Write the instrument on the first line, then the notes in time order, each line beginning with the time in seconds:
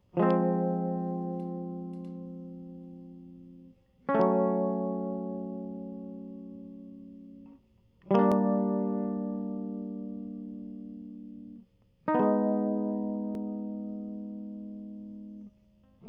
electric guitar
0.17 F3 G#3
0.22 C4
4.09 C#4
4.15 A3
4.20 F#3
8.11 G3 A#3
8.19 D4
12.08 D#4
12.15 B3
12.20 G#3